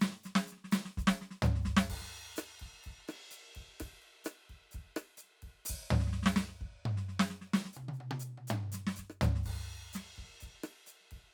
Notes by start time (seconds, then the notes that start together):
0.01 snare, hi-hat pedal
0.23 snare, hi-hat pedal
0.35 snare
0.46 snare, hi-hat pedal
0.52 snare
0.57 snare
0.64 snare
0.72 snare, hi-hat pedal
0.85 snare
0.97 kick, snare, hi-hat pedal
1.07 kick, snare
1.21 snare
1.31 snare
1.42 hi-hat pedal, floor tom
1.55 snare
1.62 kick, hi-hat pedal
1.72 kick
1.77 snare
1.87 kick, hi-hat pedal, crash
1.96 kick
2.01 snare
2.07 snare
2.36 cross-stick, hi-hat pedal, ride
2.60 kick, snare, ride
2.67 kick, snare
2.71 snare
2.76 snare
2.83 kick, hi-hat pedal, ride
2.91 kick
3.08 cross-stick, ride
3.31 hi-hat pedal, ride
3.55 kick, ride
3.62 kick
3.79 kick, cross-stick, hi-hat pedal, ride
3.86 kick
4.02 ride
4.24 cross-stick, hi-hat pedal, ride
4.50 kick, ride
4.71 kick, hi-hat pedal, ride
4.80 kick
4.96 cross-stick, ride
5.17 hi-hat pedal, ride
5.23 snare
5.42 kick, ride
5.65 hi-hat pedal
5.70 kick
5.76 kick
5.91 floor tom
6.00 snare
6.07 snare
6.13 snare
6.26 snare
6.36 snare
6.49 snare
6.61 kick
6.67 kick
6.85 mid tom
6.97 snare
7.09 snare
7.19 snare
7.30 snare
7.41 snare
7.53 snare, hi-hat pedal
7.65 snare
7.73 hi-hat pedal, high tom
7.81 kick
7.89 high tom
7.94 hi-hat pedal
8.00 high tom
8.11 high tom
8.19 hi-hat pedal
8.38 high tom
8.47 hi-hat pedal, mid tom
8.63 high tom
8.72 snare, hi-hat pedal
8.87 snare
8.96 kick, snare, hi-hat pedal
9.10 cross-stick
9.21 kick, hi-hat pedal, floor tom
9.35 snare
9.43 kick, hi-hat pedal, crash
9.49 kick, snare
9.55 snare
9.59 snare
9.64 snare
9.93 snare, hi-hat pedal, ride
10.16 kick, ride
10.23 kick, snare
10.27 snare
10.31 snare
10.40 kick, hi-hat pedal, ride
10.48 kick
10.64 cross-stick, ride
10.87 hi-hat pedal, ride
11.01 snare
11.11 kick, ride
11.17 kick